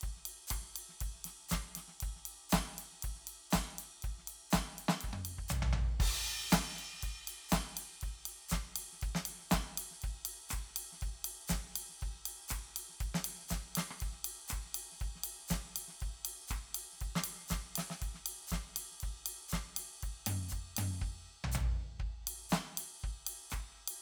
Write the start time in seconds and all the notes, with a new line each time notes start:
0.01 kick, ride
0.16 snare
0.25 ride
0.47 kick, cross-stick, hi-hat pedal, ride
0.61 snare
0.76 ride
0.89 snare
1.01 kick, ride
1.14 snare
1.24 snare, ride
1.49 kick, snare, hi-hat pedal, ride
1.75 snare, ride
1.88 snare
2.00 kick, ride
2.16 snare
2.25 ride
2.49 kick, snare, hi-hat pedal, ride
2.78 ride
2.92 snare
3.02 kick, ride
3.15 snare
3.27 ride
3.50 snare, hi-hat pedal, ride
3.54 kick
3.78 ride
4.02 kick, ride
4.18 snare
4.27 ride
4.50 kick, snare, hi-hat pedal, ride
4.78 ride
4.88 snare
5.01 kick, ride
5.13 high tom
5.25 ride
5.38 kick
5.48 floor tom, hi-hat pedal
5.62 floor tom
5.73 floor tom
6.00 kick, crash, ride
6.26 ride
6.50 kick, snare, hi-hat pedal, ride
6.78 ride
6.93 snare
7.03 kick, ride
7.27 ride
7.49 kick, snare, hi-hat pedal, ride
7.77 ride
7.92 snare
8.01 kick, ride
8.25 ride
8.49 kick, snare, hi-hat pedal, ride
8.76 ride
8.92 snare
9.01 kick, ride
9.15 snare
9.25 ride
9.50 kick, snare, hi-hat pedal, ride
9.78 ride
9.91 snare
10.02 kick, ride
10.13 snare
10.25 ride
10.49 kick, cross-stick, hi-hat pedal, ride
10.76 ride
10.92 snare
11.01 kick, ride
11.14 snare
11.24 ride
11.48 kick, snare, hi-hat pedal, ride
11.76 ride
11.89 snare
12.01 kick, ride
12.14 snare
12.26 ride
12.48 kick, cross-stick, hi-hat pedal, ride
12.76 ride
12.89 snare
13.00 kick, ride
13.14 snare
13.24 ride
13.48 kick, snare, hi-hat pedal, ride
13.75 snare, ride
13.91 cross-stick
14.00 kick, ride
14.12 snare
14.15 snare
14.24 ride
14.48 cross-stick, hi-hat pedal, ride
14.53 kick
14.65 snare
14.74 ride
14.92 snare
15.00 kick, ride
15.15 snare
15.24 ride
15.48 kick, snare, hi-hat pedal, ride
15.76 ride
15.88 snare
16.01 kick, ride
16.16 snare
16.25 ride
16.48 kick, cross-stick, hi-hat pedal, ride
16.69 snare
16.74 ride
16.93 snare
17.01 kick, ride
17.15 snare
17.24 ride
17.48 kick, snare, hi-hat pedal, ride
17.76 snare, ride
17.90 snare
17.96 hi-hat pedal
18.02 kick, ride
18.14 snare
18.26 ride
18.47 hi-hat pedal, ride
18.52 kick, snare
18.69 snare
18.76 ride
18.91 snare
19.00 kick, ride
19.26 ride
19.48 hi-hat pedal, ride
19.53 kick, snare
19.76 ride
20.03 kick, ride
20.26 high tom, ride
20.49 kick, hi-hat pedal
20.77 high tom, ride
21.01 kick
21.44 floor tom
21.52 floor tom, hi-hat pedal
22.00 kick
22.27 ride
22.49 kick, snare, hi-hat pedal
22.77 ride
22.98 hi-hat pedal
23.04 kick
23.27 ride
23.50 kick, cross-stick, hi-hat pedal
23.88 ride